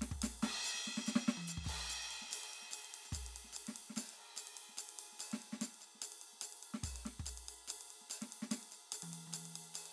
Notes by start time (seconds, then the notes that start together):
0.01 snare, ride, percussion
0.11 kick
0.22 snare, ride, percussion
0.42 snare, percussion, ride
0.64 ride, percussion
0.74 snare
0.84 snare, percussion
0.97 snare
1.07 snare, percussion
1.15 snare
1.28 snare
1.37 high tom
1.47 percussion, floor tom
1.57 kick
1.64 kick, percussion, crash
1.69 ride
1.90 ride, percussion
2.02 ride
2.11 ride, percussion
2.22 snare
2.31 ride, percussion
2.43 ride
2.53 ride
2.62 snare
2.71 ride, percussion
2.85 ride
2.94 ride
3.05 percussion
3.12 kick, ride, percussion
3.26 ride
3.36 ride
3.44 snare
3.50 snare, percussion
3.57 ride
3.67 snare, ride
3.76 ride
3.90 snare
3.96 snare, ride, percussion
4.09 ride
4.16 percussion, ride
4.36 ride, percussion
4.47 ride
4.57 ride
4.69 snare
4.77 ride, percussion
4.89 ride
4.99 ride
5.12 snare
5.20 ride, percussion
5.32 snare, ride
5.42 ride
5.52 snare
5.61 snare, ride, percussion
5.74 ride
5.81 ride, percussion
5.95 snare
6.02 ride, percussion
6.12 ride
6.22 ride
6.33 snare
6.41 ride, percussion
6.53 ride
6.62 ride, percussion
6.74 snare
6.83 kick, ride, percussion
6.96 ride
7.03 snare, ride, percussion
7.20 kick
7.26 ride, percussion
7.38 ride
7.47 ride, percussion
7.68 ride, percussion
7.81 ride
7.88 ride, percussion
8.01 snare
8.10 ride, percussion
8.22 snare, ride
8.29 ride, percussion
8.42 snare
8.51 snare, ride, percussion
8.63 ride
8.71 ride, percussion
8.92 ride, percussion
9.02 high tom, ride
9.12 ride, percussion
9.27 high tom
9.33 high tom, ride, percussion
9.46 ride
9.53 ride, percussion
9.74 ride, percussion
9.86 ride